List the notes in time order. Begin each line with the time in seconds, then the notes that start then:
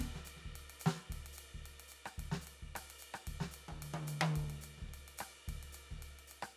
0.01 kick, ride
0.07 kick
0.16 snare
0.26 snare, hi-hat pedal, ride
0.37 snare
0.43 kick, snare
0.47 snare
0.52 snare, ride
0.70 ride
0.80 hi-hat pedal, ride
0.87 snare
1.11 kick, ride
1.15 snare
1.19 snare
1.22 snare
1.24 snare, ride
1.34 hi-hat pedal
1.39 ride
1.55 kick
1.66 ride
1.80 ride
1.89 hi-hat pedal, ride
2.06 cross-stick
2.19 kick, ride
2.26 kick
2.32 snare
2.42 hi-hat pedal
2.48 ride
2.63 kick
2.76 cross-stick, ride
2.91 ride
2.99 hi-hat pedal, ride
3.15 cross-stick
3.28 kick, ride
3.41 snare
3.52 hi-hat pedal, ride
3.69 kick, high tom
3.83 ride
3.94 high tom
4.08 hi-hat pedal, ride
4.22 high tom
4.36 kick, ride
4.51 ride
4.62 hi-hat pedal, ride
4.78 snare
4.82 kick, snare
4.92 snare, ride
4.97 snare
5.09 ride
5.18 cross-stick, hi-hat pedal, ride
5.49 kick, snare, ride
5.56 kick
5.64 ride
5.73 hi-hat pedal, ride
5.91 kick, snare
5.96 kick, snare
6.00 snare, ride
6.20 ride
6.28 hi-hat pedal, ride
6.43 cross-stick